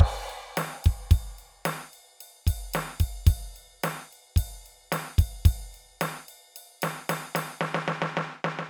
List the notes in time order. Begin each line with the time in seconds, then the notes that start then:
0.02 kick, crash
0.29 ride
0.57 snare, ride
0.84 kick, ride
1.11 kick, ride
1.38 ride
1.65 snare, ride
1.93 ride
2.20 ride
2.46 kick, ride
2.73 snare, ride
3.00 kick, ride
3.26 kick, ride
3.56 ride
3.83 snare, ride
4.12 ride
4.36 kick, ride
4.66 ride
4.92 snare, ride
5.18 kick, ride
5.45 kick, ride
5.74 ride
6.01 snare, ride
6.28 ride
6.56 ride
6.82 snare, ride
7.09 snare, ride
7.35 snare, ride
7.61 snare
7.74 snare
7.88 snare
8.02 snare
8.17 snare
8.44 snare
8.59 snare